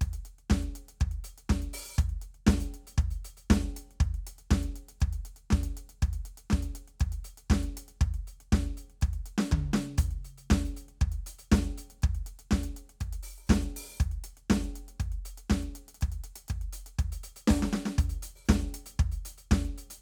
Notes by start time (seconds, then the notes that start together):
0.01 kick, closed hi-hat
0.13 closed hi-hat
0.25 closed hi-hat
0.39 closed hi-hat
0.50 kick, snare
0.62 closed hi-hat
0.75 closed hi-hat
0.89 closed hi-hat
1.00 kick, closed hi-hat
1.11 closed hi-hat
1.24 closed hi-hat
1.38 closed hi-hat
1.49 kick, snare
1.62 closed hi-hat
1.73 open hi-hat
1.88 open hi-hat
1.96 kick, closed hi-hat, hi-hat pedal
2.09 closed hi-hat
2.22 closed hi-hat
2.34 closed hi-hat
2.47 kick, snare
2.60 closed hi-hat
2.66 kick
2.74 closed hi-hat
2.87 closed hi-hat
2.98 kick, closed hi-hat
3.11 closed hi-hat
3.25 closed hi-hat
3.37 closed hi-hat
3.50 kick, snare
3.64 closed hi-hat
3.76 closed hi-hat
3.91 closed hi-hat
4.00 kick, closed hi-hat
4.14 closed hi-hat
4.27 closed hi-hat
4.38 closed hi-hat
4.51 kick, snare
4.63 closed hi-hat
4.72 kick
4.76 closed hi-hat
4.89 closed hi-hat
5.01 kick, closed hi-hat
5.13 closed hi-hat
5.25 closed hi-hat
5.36 closed hi-hat
5.50 kick, snare
5.63 closed hi-hat
5.74 kick, closed hi-hat
5.89 closed hi-hat
6.02 kick, closed hi-hat
6.13 closed hi-hat
6.25 closed hi-hat
6.37 closed hi-hat
6.50 kick, snare
6.62 closed hi-hat
6.73 kick, closed hi-hat
6.88 closed hi-hat
7.00 kick, closed hi-hat
7.12 closed hi-hat
7.24 closed hi-hat
7.38 closed hi-hat
7.50 kick, snare
7.63 closed hi-hat
7.77 closed hi-hat
7.88 closed hi-hat
8.01 kick, closed hi-hat
8.14 closed hi-hat
8.27 closed hi-hat
8.40 closed hi-hat
8.52 kick, snare
8.66 closed hi-hat
8.77 closed hi-hat
8.90 closed hi-hat
9.01 kick, closed hi-hat
9.13 closed hi-hat
9.26 closed hi-hat
9.38 snare
9.51 kick, high tom
9.73 snare
9.98 closed hi-hat, kick
10.11 closed hi-hat
10.25 closed hi-hat
10.38 closed hi-hat
10.50 kick, snare
10.65 closed hi-hat
10.77 closed hi-hat
10.88 closed hi-hat
11.01 kick, closed hi-hat
11.12 closed hi-hat
11.26 closed hi-hat
11.39 closed hi-hat
11.52 kick, snare
11.65 closed hi-hat
11.78 closed hi-hat
11.90 closed hi-hat
12.02 kick, closed hi-hat
12.15 closed hi-hat
12.26 closed hi-hat
12.39 closed hi-hat
12.51 kick, snare
12.63 closed hi-hat
12.76 closed hi-hat
12.89 closed hi-hat
13.01 kick, closed hi-hat
13.13 closed hi-hat
13.23 open hi-hat
13.38 open hi-hat
13.47 kick, snare, hi-hat pedal
13.63 closed hi-hat
13.76 open hi-hat
13.90 open hi-hat
13.97 kick, closed hi-hat, hi-hat pedal
14.11 closed hi-hat
14.24 closed hi-hat
14.37 closed hi-hat
14.50 kick, snare
14.64 closed hi-hat
14.76 closed hi-hat
14.88 closed hi-hat
15.00 kick, closed hi-hat
15.12 closed hi-hat
15.25 closed hi-hat
15.38 closed hi-hat
15.50 kick, snare
15.62 closed hi-hat
15.75 closed hi-hat
15.88 closed hi-hat
15.94 closed hi-hat
16.01 kick, closed hi-hat
16.12 closed hi-hat
16.24 closed hi-hat
16.36 closed hi-hat
16.48 kick, closed hi-hat
16.61 closed hi-hat
16.73 closed hi-hat
16.86 closed hi-hat
16.99 kick, closed hi-hat
17.12 closed hi-hat
17.23 closed hi-hat
17.36 closed hi-hat
17.48 kick, snare
17.62 snare
17.73 snare
17.86 snare
17.98 closed hi-hat, kick
18.09 closed hi-hat
18.23 open hi-hat
18.35 open hi-hat
18.45 kick, snare, hi-hat pedal
18.60 closed hi-hat
18.69 kick
18.74 closed hi-hat
18.86 closed hi-hat
18.99 kick, closed hi-hat
19.12 closed hi-hat
19.25 closed hi-hat
19.38 closed hi-hat
19.51 kick, snare
19.65 closed hi-hat
19.71 kick
19.78 closed hi-hat
19.90 closed hi-hat